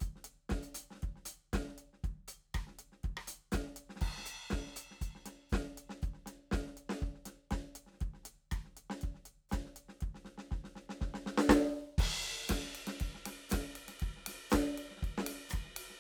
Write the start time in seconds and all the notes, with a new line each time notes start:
0.01 closed hi-hat, kick
0.16 snare
0.25 closed hi-hat
0.50 kick, snare, closed hi-hat
0.63 closed hi-hat, snare
0.75 open hi-hat
0.91 snare
0.95 snare
1.03 kick, closed hi-hat
1.16 snare
1.26 closed hi-hat
1.54 kick, snare, closed hi-hat
1.68 snare
1.79 closed hi-hat
1.94 snare
2.04 kick, closed hi-hat
2.29 open hi-hat
2.55 kick, cross-stick, closed hi-hat
2.68 snare
2.71 snare
2.79 closed hi-hat
2.93 snare
3.04 kick, closed hi-hat
3.18 cross-stick
3.28 closed hi-hat
3.53 closed hi-hat, kick, snare
3.67 snare
3.77 closed hi-hat
3.90 snare
3.97 snare
4.00 kick, snare, crash
4.18 snare
4.26 closed hi-hat
4.51 kick, snare, closed hi-hat
4.67 snare
4.77 closed hi-hat
4.92 snare
5.02 closed hi-hat, kick
5.16 snare
5.26 snare, open hi-hat
5.50 kick, snare, closed hi-hat, hi-hat pedal
5.69 snare
5.78 closed hi-hat
5.90 snare
6.03 closed hi-hat, kick
6.14 snare
6.27 snare, closed hi-hat
6.52 closed hi-hat, kick, snare
6.67 snare
6.78 closed hi-hat
6.90 snare
7.01 kick, closed hi-hat
7.15 snare
7.26 snare, closed hi-hat
7.51 kick, snare, closed hi-hat
7.76 closed hi-hat
7.87 snare
7.91 snare
7.94 snare
8.01 kick, closed hi-hat
8.14 snare
8.24 snare, closed hi-hat
8.52 kick, cross-stick, closed hi-hat
8.66 snare
8.78 closed hi-hat
8.91 snare
9.02 kick, closed hi-hat
9.15 snare
9.26 open hi-hat
9.50 kick, snare, closed hi-hat, hi-hat pedal
9.66 snare
9.77 closed hi-hat
9.89 snare
10.01 kick, closed hi-hat
10.15 snare
10.25 snare
10.38 snare
10.52 kick, snare
10.65 snare
10.76 snare
10.90 snare
11.02 kick, snare
11.15 snare
11.27 snare
11.38 snare
11.50 kick, snare
11.99 kick, crash, ride
12.24 ride
12.48 kick, snare, hi-hat pedal, ride
12.64 snare
12.76 ride
12.88 snare, ride
13.01 kick, ride
13.15 snare
13.26 snare, ride
13.50 kick, snare, hi-hat pedal, ride
13.63 snare
13.76 ride
13.89 snare, ride
14.00 kick, ride
14.17 snare
14.27 snare, ride
14.51 kick, snare, hi-hat pedal, ride
14.67 snare
14.78 ride
14.91 snare
14.98 snare
15.03 kick, ride
15.18 snare
15.27 ride
15.50 cross-stick, hi-hat pedal, ride
15.54 kick
15.65 snare
15.77 ride
15.91 snare